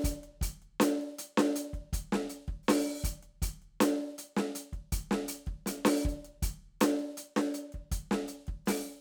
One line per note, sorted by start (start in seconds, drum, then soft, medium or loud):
0.01 closed hi-hat loud
0.01 kick medium
0.01 hi-hat pedal medium
0.23 closed hi-hat soft
0.41 closed hi-hat loud
0.41 kick medium
0.62 closed hi-hat soft
0.80 closed hi-hat loud
0.80 snare loud
1.01 closed hi-hat soft
1.19 closed hi-hat loud
1.38 snare loud
1.38 closed hi-hat soft
1.56 closed hi-hat loud
1.73 kick soft
1.73 closed hi-hat soft
1.93 closed hi-hat loud
1.93 kick medium
2.12 snare loud
2.30 closed hi-hat medium
2.48 kick medium
2.48 closed hi-hat soft
2.63 hi-hat pedal soft
2.69 open hi-hat loud
2.69 snare loud
3.03 closed hi-hat loud
3.03 kick medium
3.03 hi-hat pedal medium
3.23 closed hi-hat soft
3.42 closed hi-hat loud
3.42 kick medium
3.62 closed hi-hat soft
3.81 closed hi-hat loud
3.81 snare loud
4.18 closed hi-hat loud
4.37 snare loud
4.37 closed hi-hat soft
4.55 closed hi-hat loud
4.73 kick soft
4.73 closed hi-hat soft
4.92 closed hi-hat loud
4.92 kick medium
5.11 snare loud
5.11 closed hi-hat soft
5.28 closed hi-hat loud
5.47 kick medium
5.47 closed hi-hat soft
5.66 closed hi-hat loud
5.66 snare loud
5.85 open hi-hat loud
5.85 snare loud
6.03 kick medium
6.03 hi-hat pedal soft
6.09 closed hi-hat medium
6.25 closed hi-hat medium
6.43 closed hi-hat loud
6.43 kick medium
6.81 closed hi-hat loud
6.81 snare loud
6.99 closed hi-hat soft
7.17 closed hi-hat loud
7.36 snare loud
7.36 closed hi-hat medium
7.54 closed hi-hat medium
7.72 kick soft
7.72 closed hi-hat soft
7.92 closed hi-hat loud
7.92 kick medium
8.11 snare loud
8.28 closed hi-hat medium
8.46 kick medium
8.46 snare soft
8.46 closed hi-hat soft
8.66 open hi-hat loud
8.66 snare loud
8.66 hi-hat pedal medium